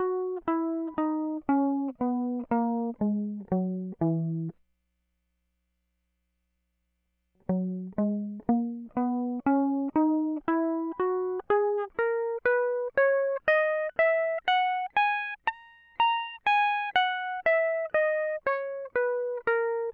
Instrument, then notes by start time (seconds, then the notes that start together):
electric guitar
0.00 F#4
0.48 E4
0.98 D#4
1.49 C#4
2.01 B3
2.52 A#3
3.02 G#3
3.52 F#3
4.04 E3
7.50 F#3
7.99 G#3
8.49 A#3
8.97 B3
9.47 C#4
9.96 D#4
10.48 E4
11.00 F#4
11.50 G#4
11.99 A#4
12.46 B4
12.98 C#5
13.48 D#5
13.99 E5
14.48 F#5
14.97 G#5
15.47 A5
16.00 A#5
16.47 G#5
16.96 F#5
17.46 E5
17.94 D#5
18.47 C#5
18.96 B4
19.48 A#4